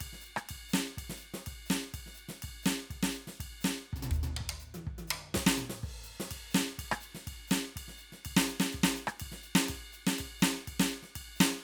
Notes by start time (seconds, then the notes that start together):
0.01 kick, ride bell
0.07 kick
0.13 snare
0.21 hi-hat pedal
0.26 ride
0.37 cross-stick
0.49 kick, ride bell
0.69 hi-hat pedal
0.74 snare
0.98 kick, ride bell
1.04 kick
1.10 snare
1.17 hi-hat pedal
1.22 ride
1.34 snare
1.47 kick, ride bell
1.53 kick
1.66 hi-hat pedal
1.70 snare
1.94 kick, ride bell
2.07 snare
2.15 hi-hat pedal, ride
2.29 snare
2.43 kick, ride bell
2.50 kick
2.63 snare, hi-hat pedal
2.91 kick, ride bell
2.96 kick
3.03 snare
3.11 hi-hat pedal
3.15 ride
3.28 snare
3.40 kick, ride bell
3.46 kick
3.61 snare, hi-hat pedal
3.93 kick, mid tom
3.99 kick, mid tom
4.05 kick
4.11 hi-hat pedal, mid tom
4.23 mid tom
4.37 kick, mid tom
4.47 kick, high tom
4.60 hi-hat pedal
4.74 high tom
4.87 kick
4.95 kick, high tom
5.08 hi-hat pedal, floor tom
5.35 kick, snare
5.43 kick, snare
5.56 hi-hat pedal, mid tom
5.70 snare
5.83 kick, crash
5.91 kick
6.04 hi-hat pedal
6.20 snare
6.31 kick, ride bell
6.51 snare, hi-hat pedal
6.63 snare
6.79 kick, ride bell
6.85 kick
6.92 cross-stick
7.01 hi-hat pedal, ride
7.15 snare
7.27 kick, ride bell
7.33 kick
7.48 snare, hi-hat pedal
7.76 kick, ride bell
7.82 kick
7.88 snare
7.98 hi-hat pedal, ride
8.13 snare
8.25 kick, ride bell
8.32 kick
8.37 snare
8.47 hi-hat pedal, ride
8.60 snare
8.73 kick, ride bell
8.80 kick, snare
8.96 hi-hat pedal, ride
9.07 cross-stick
9.20 kick, ride bell
9.28 kick
9.32 snare
9.43 hi-hat pedal, ride
9.55 snare
9.69 kick, ride bell
9.76 kick
9.93 hi-hat pedal, ride
10.07 snare
10.19 kick, ride bell
10.26 kick
10.40 snare, hi-hat pedal
10.68 kick, ride bell
10.80 snare
10.88 hi-hat pedal, ride
11.03 snare
11.16 kick, ride bell
11.22 kick
11.36 hi-hat pedal
11.41 snare